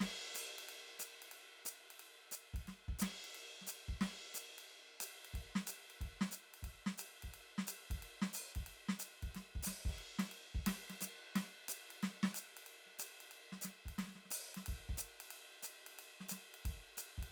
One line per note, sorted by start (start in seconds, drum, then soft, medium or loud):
0.01 snare medium
0.01 ride medium
0.35 hi-hat pedal medium
0.35 ride medium
0.59 ride medium
0.69 ride medium
1.00 hi-hat pedal loud
1.00 ride medium
1.23 ride medium
1.32 ride medium
1.66 hi-hat pedal loud
1.66 ride medium
1.91 ride medium
2.00 ride medium
2.32 hi-hat pedal loud
2.32 ride medium
2.54 kick soft
2.54 ride medium
2.68 snare soft
2.68 ride soft
2.89 kick soft
2.99 snare medium
2.99 hi-hat pedal loud
2.99 ride medium
3.25 ride medium
3.35 ride medium
3.62 snare soft
3.67 hi-hat pedal loud
3.67 ride medium
3.89 kick soft
4.01 snare medium
4.01 ride medium
4.35 hi-hat pedal loud
4.35 ride medium
4.59 ride medium
5.01 hi-hat pedal loud
5.01 ride loud
5.25 ride medium
5.34 kick soft
5.34 ride medium
5.56 snare medium
5.67 hi-hat pedal loud
5.67 ride medium
5.91 ride soft
6.01 kick soft
6.01 ride medium
6.21 snare medium
6.32 hi-hat pedal medium
6.32 ride medium
6.55 ride medium
6.63 kick soft
6.63 ride medium
6.87 snare medium
6.98 hi-hat pedal medium
6.98 ride medium
7.23 kick soft
7.23 ride medium
7.34 ride medium
7.59 snare medium
7.68 hi-hat pedal loud
7.68 ride loud
7.91 kick soft
7.91 ride medium
8.03 ride medium
8.22 snare medium
8.34 hi-hat pedal loud
8.34 ride medium
8.56 kick soft
8.56 ride medium
8.67 ride medium
8.89 snare medium
9.00 hi-hat pedal medium
9.00 ride medium
9.23 kick soft
9.23 ride soft
9.35 snare soft
9.35 ride medium
9.56 kick soft
9.63 snare soft
9.63 hi-hat pedal loud
9.63 ride medium
9.86 kick soft
9.86 ride medium
9.99 ride soft
10.19 snare medium
10.19 ride medium
10.32 ride medium
10.55 kick soft
10.67 snare medium
10.67 ride loud
10.90 snare soft
10.90 ride medium
11.01 snare soft
11.01 hi-hat pedal loud
11.01 ride medium
11.36 snare medium
11.36 ride medium
11.69 hi-hat pedal loud
11.69 ride loud
11.91 ride medium
12.03 snare medium
12.03 ride medium
12.24 snare medium
12.35 hi-hat pedal loud
12.35 ride medium
12.57 ride medium
12.67 ride medium
12.87 snare soft
12.99 hi-hat pedal loud
12.99 ride loud
13.21 ride medium
13.32 ride medium
13.53 snare soft
13.62 snare soft
13.62 hi-hat pedal loud
13.62 ride medium
13.86 kick soft
13.86 ride medium
13.99 snare medium
13.99 ride medium
14.04 snare soft
14.08 snare soft
14.16 snare soft
14.26 snare soft
14.31 hi-hat pedal loud
14.31 ride medium
14.55 snare soft
14.55 ride medium
14.67 kick soft
14.67 ride medium
14.90 kick soft
14.98 hi-hat pedal loud
14.98 ride medium
15.21 ride medium
15.31 ride medium
15.63 hi-hat pedal medium
15.63 ride medium
15.87 ride medium
15.99 ride medium
16.21 snare soft
16.29 snare soft
16.29 hi-hat pedal loud
16.29 ride medium
16.55 ride medium
16.65 kick soft
16.65 ride medium
16.98 hi-hat pedal medium
16.98 ride medium
17.18 kick soft
17.23 ride medium